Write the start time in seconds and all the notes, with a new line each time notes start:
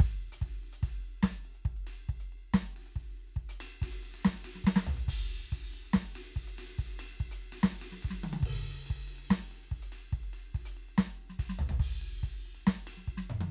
0.01 kick, ride bell
0.12 closed hi-hat
0.22 ride
0.33 closed hi-hat
0.43 kick, ride
0.56 closed hi-hat
0.65 ride
0.74 closed hi-hat
0.84 kick, ride bell
1.05 ride
1.24 kick, snare
1.46 ride bell
1.56 closed hi-hat
1.66 kick, ride
1.78 closed hi-hat
1.88 ride bell
2.10 kick, ride
2.21 closed hi-hat
2.33 ride bell
2.55 kick, snare
2.77 ride
2.87 closed hi-hat
2.97 kick, ride
3.18 ride, floor tom
3.28 closed hi-hat
3.37 kick, ride
3.50 closed hi-hat
3.62 ride bell
3.83 kick, ride
3.93 closed hi-hat
4.04 ride bell
4.15 ride
4.26 kick, snare
4.46 ride
4.56 snare
4.65 kick, snare
4.77 snare
4.88 floor tom
4.98 closed hi-hat
5.09 kick, crash
5.30 ride
5.41 closed hi-hat
5.53 kick, ride
5.65 closed hi-hat
5.75 ride
5.84 ride bell
5.95 kick, snare
6.17 ride
6.31 closed hi-hat
6.37 kick, ride
6.49 closed hi-hat
6.60 ride
6.70 closed hi-hat
6.80 kick, ride
6.90 closed hi-hat
7.00 ride bell
7.13 closed hi-hat
7.21 kick, ride
7.32 closed hi-hat
7.44 ride bell
7.54 ride
7.64 kick, snare
7.83 ride
7.93 snare
8.04 kick, ride
8.12 snare
8.25 high tom
8.34 high tom
8.44 kick, crash
8.57 closed hi-hat
8.68 ride
8.78 closed hi-hat
8.87 kick, ride bell
8.97 closed hi-hat
9.09 ride
9.20 ride
9.31 kick, snare
9.52 ride bell
9.65 closed hi-hat
9.73 kick, ride bell
9.84 closed hi-hat
9.93 ride bell
10.14 kick, ride
10.25 closed hi-hat
10.35 ride bell
10.49 closed hi-hat
10.56 kick, ride
10.67 closed hi-hat
10.78 ride bell
10.90 ride bell
10.99 kick, snare
11.19 snare, ride
11.31 snare
11.40 kick, ride bell
11.50 snare
11.60 floor tom
11.70 floor tom
11.81 kick, crash
11.93 closed hi-hat
12.03 ride
12.12 closed hi-hat
12.24 kick, ride bell
12.35 closed hi-hat
12.47 ride
12.56 ride bell
12.68 kick, snare
12.88 ride bell
12.98 snare
13.09 kick, ride
13.19 snare
13.31 mid tom
13.42 high tom